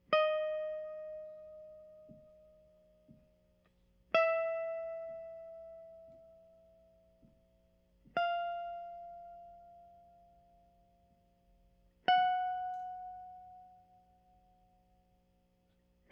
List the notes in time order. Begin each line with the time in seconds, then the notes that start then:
0.13 D#5
4.15 E5
8.17 F5
12.09 F#5